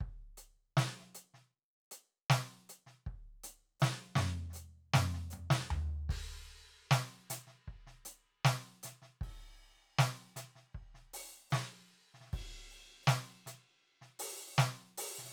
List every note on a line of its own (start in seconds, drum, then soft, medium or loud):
0.01 kick medium
0.38 closed hi-hat medium
0.77 snare loud
1.00 snare soft
1.15 closed hi-hat medium
1.34 snare soft
1.92 closed hi-hat medium
2.30 snare loud
2.54 snare soft
2.70 closed hi-hat medium
2.87 snare soft
3.07 kick medium
3.07 closed hi-hat soft
3.44 open hi-hat medium
3.80 snare loud
3.80 hi-hat pedal medium
4.16 snare loud
4.16 mid tom loud
4.50 snare soft
4.50 hi-hat pedal medium
4.56 closed hi-hat medium
4.94 snare loud
4.94 mid tom loud
5.14 snare soft
5.31 hi-hat pedal medium
5.31 mid tom medium
5.51 snare loud
5.71 floor tom loud
6.10 kick medium
6.10 crash medium
6.48 closed hi-hat soft
6.91 snare loud
7.30 closed hi-hat loud
7.30 snare medium
7.47 snare soft
7.68 kick soft
7.87 snare soft
8.05 closed hi-hat medium
8.45 snare loud
8.83 closed hi-hat medium
8.83 snare soft
9.02 snare soft
9.21 kick medium
9.21 crash soft
9.59 closed hi-hat soft
9.99 snare loud
10.36 closed hi-hat medium
10.36 snare medium
10.56 snare soft
10.73 kick soft
10.73 closed hi-hat soft
10.95 snare soft
11.14 open hi-hat loud
11.51 snare loud
11.51 hi-hat pedal medium
11.51 crash medium
12.14 snare soft
12.21 snare soft
12.26 snare soft
12.30 kick medium
12.30 snare soft
12.30 ride medium
12.35 snare soft
12.71 open hi-hat soft
13.03 hi-hat pedal soft
13.08 snare loud
13.47 closed hi-hat medium
13.47 snare soft
14.02 snare soft
14.08 snare soft
14.20 open hi-hat loud
14.58 snare loud
14.58 hi-hat pedal medium
14.79 snare soft
14.98 open hi-hat loud
15.19 snare soft
15.24 snare soft
15.29 snare soft